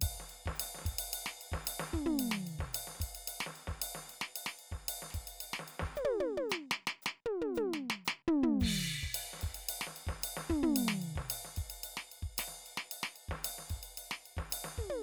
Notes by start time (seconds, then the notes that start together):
0.01 kick, hi-hat pedal, ride bell
0.15 kick
0.20 snare
0.29 ride
0.46 kick, snare
0.51 kick
0.55 hi-hat pedal
0.60 ride bell
0.75 snare
0.79 snare
0.82 snare
0.84 kick, snare, ride
0.92 kick
0.98 ride
1.13 hi-hat pedal, ride bell
1.26 snare
1.41 ride
1.52 kick, snare
1.64 hi-hat pedal, ride
1.80 snare
1.93 kick, floor tom
2.05 floor tom
2.19 hi-hat pedal, ride bell
2.31 snare
2.47 ride
2.59 kick, snare
2.64 kick
2.73 hi-hat pedal, ride bell
2.87 snare
2.95 snare
3.00 kick, ride
3.15 ride
3.27 hi-hat pedal, ride bell
3.40 snare
3.46 snare
3.55 ride
3.67 kick, snare
3.82 hi-hat pedal, ride bell
3.95 snare
4.09 ride
4.21 snare
4.36 hi-hat pedal, ride bell
4.46 snare
4.59 ride
4.72 kick, snare
4.88 hi-hat pedal, ride bell
5.02 snare
5.10 kick, snare, ride
5.21 snare
5.24 snare, ride
5.40 hi-hat pedal, ride
5.53 snare
5.59 snare
5.68 ride
5.79 kick, snare
5.96 hi-hat pedal, high tom
6.04 high tom
6.20 high tom
6.37 high tom
6.49 snare, hi-hat pedal
6.71 snare
6.87 snare
7.02 hi-hat pedal
7.06 snare
7.25 mid tom
7.41 mid tom
7.55 hi-hat pedal, mid tom
7.74 snare
7.90 snare
8.05 snare, hi-hat pedal
8.27 floor tom
8.43 floor tom
8.60 kick, hi-hat pedal, crash
8.67 kick
9.03 kick, snare
9.13 hi-hat pedal, ride bell
9.33 snare
9.39 snare, ride
9.42 kick, snare
9.49 kick
9.54 ride
9.69 hi-hat pedal, ride bell
9.81 snare
9.87 snare
9.96 ride
10.07 kick, snare
10.13 kick
10.22 hi-hat pedal, ride
10.37 snare
10.49 kick, floor tom
10.62 floor tom
10.76 hi-hat pedal, ride
10.88 snare
11.02 ride
11.16 kick, snare
11.29 hi-hat pedal, ride bell
11.45 snare
11.56 kick, ride
11.66 snare
11.70 ride
11.83 hi-hat pedal, ride
11.97 snare
12.12 ride
12.22 kick
12.37 snare, hi-hat pedal, ride bell
12.48 snare
12.66 ride
12.77 snare
12.91 hi-hat pedal, ride
13.03 snare
13.14 hi-hat pedal, ride
13.29 kick, snare
13.43 hi-hat pedal, ride bell
13.58 snare
13.68 kick, snare, ride
13.72 snare
13.74 kick, snare
13.76 snare
13.83 ride
13.97 hi-hat pedal, ride bell
14.11 snare
14.26 ride
14.37 kick, snare
14.50 hi-hat pedal, ride bell
14.64 snare
14.78 kick, mid tom
14.83 kick
14.90 high tom